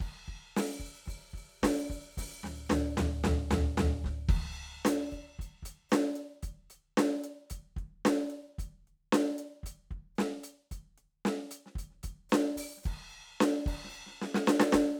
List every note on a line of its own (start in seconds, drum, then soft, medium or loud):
0.01 kick medium
0.01 crash medium
0.26 kick soft
0.26 open hi-hat soft
0.57 open hi-hat loud
0.57 snare loud
0.80 open hi-hat soft
0.80 kick soft
1.06 open hi-hat medium
1.06 kick soft
1.06 snare soft
1.34 open hi-hat soft
1.34 kick soft
1.63 open hi-hat medium
1.63 kick soft
1.63 snare loud
1.86 snare soft
1.90 open hi-hat medium
1.90 kick soft
2.18 open hi-hat loud
2.18 kick medium
2.18 snare soft
2.44 snare medium
2.44 floor tom medium
2.70 snare loud
2.70 floor tom loud
2.98 snare loud
2.98 floor tom loud
3.24 snare loud
3.24 floor tom loud
3.51 snare loud
3.51 floor tom loud
3.78 snare loud
3.78 floor tom loud
4.05 kick medium
4.05 snare medium
4.29 kick loud
4.29 crash loud
4.37 hi-hat pedal soft
4.53 closed hi-hat soft
4.86 closed hi-hat loud
4.86 snare loud
5.12 closed hi-hat soft
5.12 kick soft
5.40 closed hi-hat soft
5.40 kick soft
5.63 closed hi-hat medium
5.63 kick soft
5.90 snare loud
5.90 hi-hat pedal soft
6.16 closed hi-hat medium
6.43 closed hi-hat medium
6.43 kick medium
6.71 closed hi-hat soft
6.98 snare loud
7.24 closed hi-hat medium
7.51 closed hi-hat medium
7.51 kick soft
7.77 kick medium
7.77 closed hi-hat soft
8.06 snare loud
8.31 closed hi-hat soft
8.59 closed hi-hat medium
8.59 kick medium
8.88 closed hi-hat soft
9.13 snare loud
9.39 closed hi-hat medium
9.64 closed hi-hat medium
9.64 kick soft
9.91 kick soft
9.91 closed hi-hat soft
10.16 snare loud
10.16 hi-hat pedal soft
10.44 closed hi-hat medium
10.72 closed hi-hat soft
10.72 kick soft
10.98 closed hi-hat soft
11.26 snare loud
11.52 closed hi-hat medium
11.67 snare soft
11.76 closed hi-hat medium
11.76 kick medium
11.91 snare soft
12.04 open hi-hat medium
12.04 kick soft
12.30 snare loud
12.30 hi-hat pedal medium
12.57 open hi-hat loud
12.57 kick soft
12.78 snare soft
12.84 kick medium
12.84 hi-hat pedal medium
12.84 crash medium
13.10 closed hi-hat soft
13.41 snare loud
13.67 kick medium
13.67 crash loud
13.85 snare soft
13.90 hi-hat pedal medium
13.94 closed hi-hat soft
14.07 snare soft
14.22 snare medium
14.35 snare loud
14.47 snare loud
14.47 hi-hat pedal medium
14.60 snare loud
14.73 kick soft
14.73 snare loud